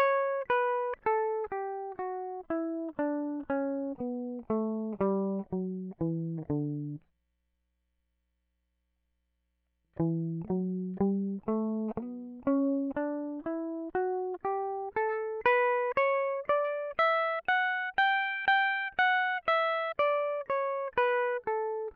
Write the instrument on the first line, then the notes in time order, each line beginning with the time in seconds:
electric guitar
0.00 C#5
0.50 B4
1.07 A4
1.52 G4
1.99 F#4
2.51 E4
2.99 D4
3.50 C#4
4.01 B3
4.51 A3
5.01 G3
5.53 F#3
6.02 E3
6.51 D3
10.01 E3
10.46 A3
10.51 F#3
11.01 G3
11.49 A3
11.98 A3
12.04 B3
12.47 C#4
12.97 D4
13.46 E4
13.95 F#4
14.45 G4
14.97 A4
15.46 B4
15.97 C#5
16.49 D5
16.99 E5
17.49 F#5
17.98 G5
18.48 G5
18.99 F#5
19.48 E5
19.99 D5
20.50 C#5
20.98 B4
21.48 A4